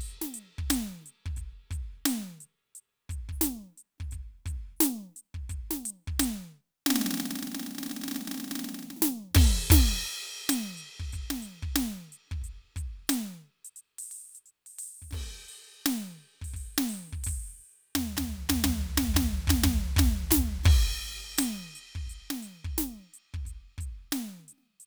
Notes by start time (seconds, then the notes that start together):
0.01 open hi-hat
0.22 snare
0.34 closed hi-hat
0.58 kick
0.70 closed hi-hat, snare
1.01 snare
1.06 closed hi-hat
1.26 kick
1.36 closed hi-hat, kick
1.71 open hi-hat, kick
2.05 open hi-hat, snare, hi-hat pedal
2.17 snare
2.41 closed hi-hat
2.75 closed hi-hat
3.09 closed hi-hat, kick
3.29 kick, hi-hat pedal
3.41 closed hi-hat, snare
3.78 closed hi-hat
3.98 kick, snare, hi-hat pedal
4.11 closed hi-hat, kick
4.46 closed hi-hat, kick
4.50 snare
4.77 hi-hat pedal
4.81 closed hi-hat, snare
5.16 closed hi-hat
5.34 kick
5.50 closed hi-hat, kick
5.71 snare
5.85 closed hi-hat
6.08 kick
6.20 closed hi-hat, snare
6.86 snare
6.91 snare
6.96 snare
7.01 snare
7.06 snare
7.11 snare
7.14 snare
7.18 snare
7.20 snare
7.26 snare
7.31 snare
7.39 snare
7.43 snare
7.47 snare
7.52 snare
7.55 snare
7.60 snare
7.63 snare
7.67 snare
7.71 snare
7.75 snare
7.78 snare
7.83 snare
7.86 snare
7.90 snare
7.91 snare
7.97 snare
8.04 snare
8.08 snare
8.11 snare
8.15 snare
8.21 snare
8.25 snare
8.28 snare
8.31 snare
8.34 snare
8.38 snare
8.40 snare
8.44 snare
8.48 snare
8.51 snare
8.56 snare
8.59 snare
8.65 snare
8.69 snare
8.79 snare
8.83 snare
8.90 snare
8.97 snare
9.02 snare
9.31 kick, snare, hi-hat pedal
9.35 kick, crash
9.66 kick
9.70 kick, snare, crash
10.48 closed hi-hat, snare, hi-hat pedal
10.77 closed hi-hat
11.00 kick
11.13 closed hi-hat, kick
11.30 snare
11.42 closed hi-hat
11.63 kick
11.76 closed hi-hat, snare
12.12 closed hi-hat
12.27 kick, snare
12.42 open hi-hat, kick
12.74 closed hi-hat, kick, snare, hi-hat pedal
13.07 closed hi-hat, snare, hi-hat pedal
13.32 hi-hat pedal
13.65 closed hi-hat
13.76 closed hi-hat
13.99 open hi-hat
14.11 open hi-hat
14.33 closed hi-hat, hi-hat pedal
14.46 closed hi-hat
14.66 open hi-hat
14.79 open hi-hat
15.02 kick
15.11 kick, snare, crash
15.20 snare
15.26 snare
15.49 open hi-hat
15.86 open hi-hat, snare
16.35 snare
16.42 open hi-hat, kick
16.54 open hi-hat, kick
16.78 snare
16.89 open hi-hat
17.07 snare
17.13 kick, snare
17.24 open hi-hat, kick
17.95 snare, floor tom
18.17 snare, floor tom
18.49 snare, floor tom
18.64 snare, floor tom
18.98 kick, snare, floor tom
19.14 kick, snare, floor tom
19.47 kick, snare, floor tom
19.64 kick, snare, floor tom
19.97 kick, snare, floor tom
20.31 kick, snare, floor tom
20.64 kick, snare, crash
21.38 open hi-hat, snare, hi-hat pedal
21.74 closed hi-hat, snare
21.95 kick
22.06 closed hi-hat, kick
22.30 snare
22.43 closed hi-hat
22.65 kick
22.78 closed hi-hat, snare
23.14 closed hi-hat
23.34 kick
23.45 closed hi-hat, kick
23.78 closed hi-hat, kick
24.11 closed hi-hat, snare, hi-hat pedal
24.40 snare
24.48 closed hi-hat
24.52 snare
24.58 snare
24.80 closed hi-hat